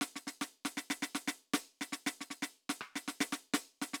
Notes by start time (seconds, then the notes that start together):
0.04 snare
0.16 snare
0.27 snare
0.41 snare
0.65 snare
0.77 snare
0.90 snare
1.02 snare
1.15 snare
1.28 snare
1.54 snare
1.81 snare
1.92 snare
2.06 snare
2.21 snare
2.30 snare
2.42 snare
2.69 snare
2.81 cross-stick
2.96 snare
3.08 snare
3.21 snare
3.32 snare
3.54 snare
3.82 snare
3.94 snare